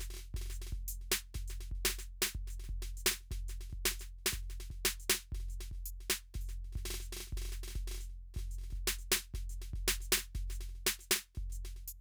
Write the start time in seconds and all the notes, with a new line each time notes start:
0.01 snare, hi-hat pedal
0.11 snare
0.14 snare
0.17 snare
0.20 snare
0.25 snare
0.35 kick, snare
0.42 snare
0.46 snare
0.50 snare, hi-hat pedal, open hi-hat
0.62 snare
0.67 snare
0.73 kick, snare
0.89 open hi-hat, hi-hat pedal
1.02 snare
1.12 snare
1.35 kick, snare
1.43 snare
1.48 snare, hi-hat pedal
1.61 snare
1.72 kick, snare
1.86 snare
1.90 snare
1.99 snare, hi-hat pedal
2.22 snare
2.27 snare
2.35 kick
2.47 snare, hi-hat pedal
2.60 snare
2.64 snare
2.70 kick, snare
2.83 snare
2.94 snare, hi-hat pedal
3.07 snare
3.12 snare
3.21 snare
3.32 kick, snare
3.42 snare
3.49 snare, hi-hat pedal
3.61 snare
3.70 kick, snare
3.86 snare
3.92 snare
4.00 snare, hi-hat pedal
4.19 snare
4.27 snare
4.33 kick, snare
4.43 snare
4.50 snare, hi-hat pedal
4.61 snare
4.71 kick, snare
4.75 snare
4.86 snare
4.99 snare, hi-hat pedal
5.10 snare
5.15 snare
5.33 kick, snare
5.40 snare
5.49 snare, hi-hat pedal
5.61 snare
5.72 kick, snare
5.75 snare
5.86 closed hi-hat
6.01 snare
6.10 snare
6.35 kick, snare
6.42 snare, open hi-hat
6.49 snare, hi-hat pedal
6.65 snare
6.73 kick, snare
6.77 snare
6.86 snare
6.91 snare
6.95 snare
7.01 snare, hi-hat pedal
7.13 snare
7.17 snare
7.21 snare
7.28 snare
7.33 kick
7.38 snare
7.42 snare
7.46 snare
7.49 snare
7.52 snare, hi-hat pedal
7.64 snare
7.68 snare
7.71 snare
7.76 kick, snare
7.88 snare
7.92 snare
7.95 snare
7.98 snare
8.01 snare, closed hi-hat, hi-hat pedal
8.10 snare
8.35 kick, snare
8.37 snare
8.39 snare
8.48 snare
8.51 snare, hi-hat pedal
8.59 snare
8.62 snare
8.64 snare
8.71 kick, snare
8.76 snare
8.88 snare
8.99 snare, hi-hat pedal
9.12 snare
9.17 snare
9.35 kick, snare
9.50 snare, hi-hat pedal
9.62 snare
9.74 kick, snare
9.88 snare
10.00 snare, hi-hat pedal
10.13 snare
10.18 snare
10.35 kick, snare
10.48 snare
10.50 snare, hi-hat pedal
10.61 snare
10.70 snare
10.76 snare
10.87 snare
11.00 snare, hi-hat pedal
11.12 snare
11.16 snare
11.35 kick, snare
11.40 snare
11.53 hi-hat pedal
11.65 snare
11.75 snare
11.88 closed hi-hat